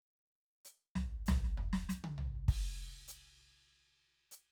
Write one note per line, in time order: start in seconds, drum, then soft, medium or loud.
0.65 hi-hat pedal medium
0.95 snare medium
0.95 floor tom medium
1.26 snare medium
1.26 floor tom loud
1.26 hi-hat pedal medium
1.44 snare soft
1.58 mid tom medium
1.73 snare medium
1.89 snare medium
1.89 hi-hat pedal medium
2.04 high tom loud
2.18 floor tom medium
2.35 kick soft
2.48 kick medium
2.48 crash medium
3.08 hi-hat pedal medium
4.31 hi-hat pedal medium